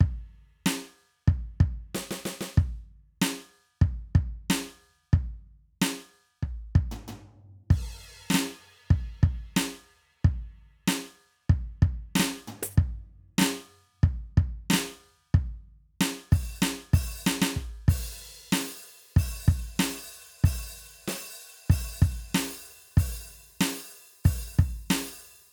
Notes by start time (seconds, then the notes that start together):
0.01 kick
0.66 snare
1.28 kick
1.61 kick
1.95 snare
2.11 snare
2.26 snare
2.41 snare
2.58 kick
3.22 snare
3.82 kick
4.15 kick
4.50 snare
5.13 kick
5.82 snare
6.43 kick
6.76 kick
6.92 floor tom
7.08 floor tom
7.71 kick, crash
8.31 snare
8.35 snare
8.91 kick
9.23 kick
9.57 snare
10.25 kick
10.88 snare
11.50 kick
11.83 kick
12.16 snare
12.20 snare
12.48 floor tom
12.63 high tom
12.78 kick
13.39 snare
13.42 snare
14.04 kick
14.38 kick
14.70 snare
14.74 snare
15.35 kick
16.01 snare
16.32 open hi-hat, kick
16.59 snare, hi-hat pedal
16.78 snare
16.93 open hi-hat, kick
17.24 snare, hi-hat pedal
17.42 snare
17.57 kick
17.88 open hi-hat, kick, crash
18.53 open hi-hat, snare
18.61 snare
19.17 open hi-hat, kick
19.48 kick
19.80 open hi-hat, snare
20.44 open hi-hat, kick
21.08 open hi-hat, snare
21.70 open hi-hat, kick
22.02 kick
22.35 open hi-hat, snare
22.97 open hi-hat, kick
23.20 kick
23.61 open hi-hat, snare
24.24 open hi-hat, kick
24.59 kick
24.90 open hi-hat, snare